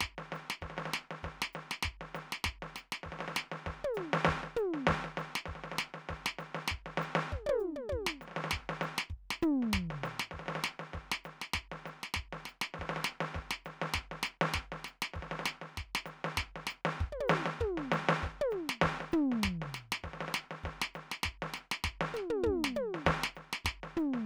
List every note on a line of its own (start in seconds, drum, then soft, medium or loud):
0.01 kick soft
0.01 snare loud
0.18 snare soft
0.32 snare medium
0.32 hi-hat pedal soft
0.50 snare loud
0.62 kick soft
0.62 snare soft
0.70 snare soft
0.77 snare soft
0.77 snare medium
0.86 snare medium
0.94 snare loud
0.94 hi-hat pedal soft
1.11 snare soft
1.24 kick soft
1.24 snare soft
1.42 snare loud
1.53 snare soft
1.53 hi-hat pedal soft
1.71 snare loud
1.83 kick soft
1.83 snare loud
2.01 snare soft
2.15 snare medium
2.15 hi-hat pedal medium
2.33 snare loud
2.45 kick soft
2.45 snare loud
2.63 snare soft
2.76 snare medium
2.76 hi-hat pedal medium
2.93 snare loud
3.04 kick soft
3.04 snare soft
3.13 snare soft
3.19 snare soft
3.21 snare medium
3.28 snare medium
3.36 snare loud
3.36 hi-hat pedal soft
3.52 snare medium
3.67 kick soft
3.67 snare medium
3.84 high tom loud
3.94 snare medium
3.94 hi-hat pedal medium
4.14 snare loud
4.25 kick soft
4.25 snare loud
4.44 snare soft
4.56 hi-hat pedal soft
4.56 mid tom loud
4.74 snare soft
4.87 kick soft
4.87 snare loud
5.05 snare soft
5.18 snare medium
5.18 hi-hat pedal soft
5.36 snare loud
5.46 kick soft
5.46 snare soft
5.56 snare soft
5.64 snare soft
5.72 snare soft
5.79 snare loud
5.79 hi-hat pedal soft
5.94 snare soft
6.09 kick soft
6.09 snare medium
6.26 snare loud
6.39 snare soft
6.39 hi-hat pedal soft
6.55 snare medium
6.68 kick soft
6.68 snare loud
6.86 snare soft
6.98 snare medium
6.98 hi-hat pedal medium
7.16 snare loud
7.32 kick soft
7.32 high tom medium
7.46 high tom loud
7.49 high tom loud
7.59 hi-hat pedal soft
7.76 high tom medium
7.89 kick soft
7.89 high tom loud
8.07 snare loud
8.21 snare soft
8.21 hi-hat pedal soft
8.28 snare soft
8.32 snare soft
8.37 snare medium
8.44 snare medium
8.51 kick soft
8.51 snare loud
8.70 snare medium
8.82 snare medium
8.82 hi-hat pedal soft
8.98 snare loud
9.10 kick soft
9.31 snare loud
9.42 floor tom loud
9.42 hi-hat pedal medium
9.63 snare soft
9.73 kick soft
9.73 snare loud
9.80 kick soft
9.91 snare soft
10.04 snare medium
10.04 hi-hat pedal soft
10.20 snare loud
10.32 kick soft
10.32 snare soft
10.40 snare soft
10.46 snare soft
10.49 snare medium
10.56 snare medium
10.64 snare loud
10.64 hi-hat pedal soft
10.80 snare soft
10.94 kick soft
10.94 snare soft
11.12 snare loud
11.25 snare soft
11.25 hi-hat pedal soft
11.42 snare medium
11.54 kick soft
11.54 snare loud
11.72 snare soft
11.86 snare soft
11.86 hi-hat pedal soft
12.04 snare medium
12.14 kick soft
12.14 snare loud
12.33 snare soft
12.46 snare medium
12.46 hi-hat pedal soft
12.62 snare loud
12.74 snare soft
12.79 kick soft
12.79 snare soft
12.90 snare medium
12.97 snare medium
13.05 snare loud
13.05 hi-hat pedal soft
13.21 snare medium
13.35 kick soft
13.35 snare soft
13.51 snare loud
13.65 snare soft
13.65 hi-hat pedal soft
13.82 snare medium
13.94 kick soft
13.94 snare loud
14.12 snare soft
14.23 snare loud
14.23 hi-hat pedal soft
14.42 snare loud
14.54 kick soft
14.54 snare loud
14.72 snare medium
14.85 snare medium
14.85 hi-hat pedal soft
15.02 snare loud
15.14 kick soft
15.14 snare soft
15.23 snare soft
15.32 snare medium
15.40 snare medium
15.46 snare loud
15.46 hi-hat pedal medium
15.62 snare soft
15.78 kick soft
15.78 snare medium
15.95 snare loud
16.06 snare soft
16.06 hi-hat pedal medium
16.25 snare medium
16.38 kick soft
16.38 snare loud
16.56 snare soft
16.67 snare loud
16.67 hi-hat pedal soft
16.85 snare loud
17.01 kick soft
17.07 kick soft
17.12 kick soft
17.12 high tom medium
17.21 high tom loud
17.28 snare loud
17.28 hi-hat pedal soft
17.46 snare medium
17.61 kick soft
17.61 mid tom loud
17.78 snare medium
17.92 snare loud
17.92 hi-hat pedal soft
18.09 snare loud
18.23 kick soft
18.23 snare soft
18.32 kick soft
18.41 high tom loud
18.51 snare soft
18.51 hi-hat pedal soft
18.70 snare loud
18.82 kick soft
18.82 snare loud
19.01 snare medium
19.12 floor tom loud
19.12 hi-hat pedal soft
19.32 snare soft
19.44 kick soft
19.44 snare loud
19.62 snare soft
19.75 snare medium
19.75 hi-hat pedal soft
19.92 snare loud
20.04 kick soft
20.04 snare soft
20.14 snare soft
20.21 snare medium
20.28 snare soft
20.34 snare loud
20.34 hi-hat pedal soft
20.51 snare soft
20.64 kick soft
20.64 snare medium
20.82 snare loud
20.95 snare soft
20.95 hi-hat pedal soft
21.12 snare medium
21.24 kick soft
21.24 snare loud
21.43 snare medium
21.54 snare medium
21.54 hi-hat pedal soft
21.72 snare loud
21.84 kick soft
21.84 snare loud
22.01 snare medium
22.14 snare soft
22.14 hi-hat pedal soft
22.14 mid tom medium
22.30 mid tom loud
22.44 kick soft
22.44 mid tom loud
22.65 snare loud
22.76 hi-hat pedal soft
22.76 high tom loud
22.95 snare medium
23.06 kick soft
23.06 snare loud
23.24 snare loud
23.35 snare soft
23.35 hi-hat pedal soft
23.53 snare loud
23.65 kick soft
23.65 snare loud
23.84 snare soft
23.97 floor tom loud
23.97 hi-hat pedal soft
24.14 snare soft